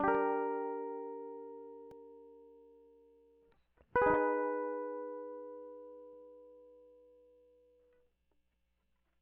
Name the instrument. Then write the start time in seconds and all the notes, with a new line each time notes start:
electric guitar
0.00 D4 G4
0.08 A#4
3.78 D#4
3.96 B4
4.02 G#4
4.07 D#4